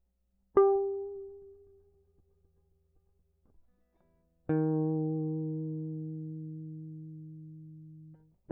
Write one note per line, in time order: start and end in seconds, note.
0.58 1.82 G4
4.50 8.17 D#3